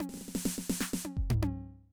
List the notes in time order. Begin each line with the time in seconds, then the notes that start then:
0.01 hi-hat pedal, high tom
0.09 snare
0.14 snare
0.17 snare
0.21 snare
0.28 snare
0.35 snare
0.43 snare, hi-hat pedal
0.58 snare
0.70 snare
0.81 snare
0.93 snare
1.05 high tom
1.17 kick
1.30 floor tom
1.43 high tom